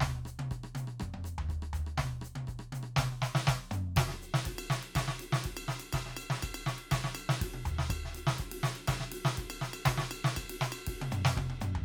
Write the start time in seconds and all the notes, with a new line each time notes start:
0.01 kick, snare, hi-hat pedal, high tom
0.16 high tom
0.26 cross-stick, hi-hat pedal
0.40 high tom
0.52 kick, cross-stick, hi-hat pedal
0.64 cross-stick
0.76 hi-hat pedal, high tom
0.88 cross-stick
1.00 kick, cross-stick, hi-hat pedal, mid tom
1.14 mid tom
1.25 cross-stick, hi-hat pedal
1.39 floor tom
1.49 kick, cross-stick, hi-hat pedal
1.63 cross-stick
1.74 floor tom, hi-hat pedal
1.87 cross-stick
1.98 kick, snare, hi-hat pedal, high tom
2.10 high tom
2.13 high tom
2.22 cross-stick, hi-hat pedal
2.36 high tom
2.48 kick, cross-stick, hi-hat pedal
2.60 cross-stick
2.73 hi-hat pedal, high tom
2.83 cross-stick
2.97 kick, snare, hi-hat pedal, high tom
3.12 high tom
3.22 snare, hi-hat pedal
3.36 snare
3.48 kick, snare, hi-hat pedal
3.72 hi-hat pedal, mid tom
3.97 kick, snare, hi-hat pedal, ride
4.09 snare
4.14 cross-stick
4.23 hi-hat pedal
4.35 snare
4.46 kick, hi-hat pedal, ride
4.59 ride bell
4.71 snare, hi-hat pedal
4.83 ride
4.96 kick, snare, hi-hat pedal, ride bell
5.08 snare
5.20 hi-hat pedal, ride
5.33 snare
5.45 kick, hi-hat pedal, ride
5.57 ride bell
5.69 snare, hi-hat pedal
5.80 ride bell
5.93 kick, snare, hi-hat pedal, ride bell
6.06 snare
6.10 snare
6.17 hi-hat pedal, ride bell
6.31 snare
6.38 snare
6.43 kick, hi-hat pedal, ride bell
6.55 ride bell
6.67 snare, hi-hat pedal
6.79 ride
6.92 kick, snare, hi-hat pedal, ride bell
7.05 snare
7.15 hi-hat pedal, ride bell
7.30 snare
7.41 kick, hi-hat pedal, ride
7.54 high tom
7.66 floor tom, hi-hat pedal
7.79 snare
7.90 kick, hi-hat pedal, ride bell
8.06 snare
8.10 snare
8.13 snare, hi-hat pedal, ride
8.27 snare
8.39 kick, hi-hat pedal, ride
8.52 ride
8.64 snare, hi-hat pedal
8.76 ride
8.88 kick, snare, hi-hat pedal, ride bell
9.01 snare
9.12 hi-hat pedal, ride
9.26 snare
9.37 kick, hi-hat pedal, ride
9.51 ride bell
9.62 snare, hi-hat pedal
9.74 ride bell
9.86 kick, snare, hi-hat pedal, ride
9.98 snare
10.02 snare
10.12 hi-hat pedal, ride bell
10.25 snare
10.37 kick, hi-hat pedal, ride bell
10.50 ride
10.62 snare, hi-hat pedal
10.73 ride bell
10.87 kick, hi-hat pedal, ride
11.02 high tom
11.09 kick, hi-hat pedal, mid tom
11.25 snare
11.36 kick, hi-hat pedal, high tom
11.50 high tom
11.59 kick, hi-hat pedal, mid tom
11.76 floor tom